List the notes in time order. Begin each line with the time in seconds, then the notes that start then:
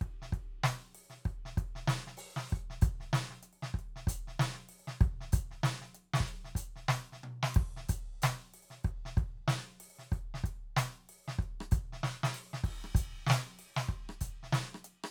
0.01 kick, closed hi-hat, hi-hat pedal
0.23 snare
0.33 kick, closed hi-hat
0.64 snare
0.95 open hi-hat
1.05 open hi-hat
1.11 snare
1.26 kick, open hi-hat
1.46 snare
1.58 kick, closed hi-hat
1.76 snare
1.88 snare
2.08 snare
2.18 open hi-hat
2.37 snare
2.51 kick, open hi-hat
2.56 hi-hat pedal
2.71 snare
2.82 closed hi-hat, kick
3.01 snare
3.14 snare
3.31 snare
3.43 closed hi-hat
3.53 open hi-hat
3.63 snare
3.75 kick, hi-hat pedal
3.80 closed hi-hat
3.97 snare
4.08 closed hi-hat, kick
4.28 snare
4.39 snare, hi-hat pedal
4.54 snare
4.69 open hi-hat
4.80 open hi-hat
4.88 snare
5.01 kick, open hi-hat
5.21 snare
5.33 closed hi-hat, kick
5.52 snare
5.64 snare, hi-hat pedal
5.82 snare
5.95 closed hi-hat
6.14 snare
6.21 kick, hi-hat pedal
6.29 closed hi-hat
6.45 snare
6.56 closed hi-hat, kick
6.76 snare
6.89 snare
7.13 snare
7.24 high tom
7.43 snare
7.55 kick, crash
7.61 hi-hat pedal
7.77 snare
7.89 closed hi-hat, kick
8.23 closed hi-hat, snare
8.54 open hi-hat
8.63 open hi-hat
8.71 snare
8.85 kick, open hi-hat
9.06 snare
9.18 kick, closed hi-hat
9.38 kick
9.48 snare
9.81 open hi-hat
9.99 snare
10.13 kick, open hi-hat
10.35 snare
10.44 kick, closed hi-hat
10.77 closed hi-hat, snare
10.86 snare
11.10 open hi-hat
11.28 snare
11.39 kick, closed hi-hat
11.61 cross-stick
11.72 closed hi-hat, kick
11.93 snare
12.04 snare
12.24 snare
12.35 open hi-hat
12.54 snare
12.64 kick, crash
12.85 cross-stick
12.95 closed hi-hat, kick
13.27 snare
13.31 snare
13.60 open hi-hat
13.77 snare
13.89 kick
14.10 cross-stick
14.21 closed hi-hat, kick
14.44 snare
14.53 snare
14.75 cross-stick
14.85 closed hi-hat
15.04 cross-stick